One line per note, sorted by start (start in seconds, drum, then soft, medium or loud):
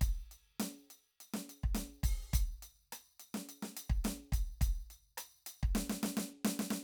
0.01 kick medium
0.01 closed hi-hat loud
0.31 closed hi-hat medium
0.60 snare medium
0.60 closed hi-hat loud
0.90 closed hi-hat medium
1.20 closed hi-hat medium
1.34 snare medium
1.49 closed hi-hat medium
1.63 kick medium
1.75 snare medium
1.75 closed hi-hat loud
2.03 kick medium
2.03 percussion loud
2.33 kick medium
2.33 hi-hat pedal loud
2.33 percussion loud
2.62 closed hi-hat medium
2.92 cross-stick medium
2.92 closed hi-hat loud
3.19 closed hi-hat medium
3.34 snare medium
3.49 closed hi-hat medium
3.62 snare medium
3.77 closed hi-hat loud
3.89 kick medium
4.04 snare loud
4.04 closed hi-hat medium
4.32 kick medium
4.32 closed hi-hat loud
4.61 kick medium
4.61 closed hi-hat loud
4.90 percussion medium
5.17 cross-stick medium
5.17 closed hi-hat loud
5.46 closed hi-hat loud
5.63 kick medium
5.75 snare loud
5.89 snare medium
6.03 snare loud
6.17 snare loud
6.45 snare loud
6.59 snare medium
6.70 snare medium